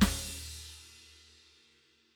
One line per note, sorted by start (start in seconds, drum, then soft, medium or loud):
0.01 kick medium
0.01 snare loud
0.01 hi-hat pedal loud
0.01 crash loud
0.08 kick soft
0.08 cross-stick medium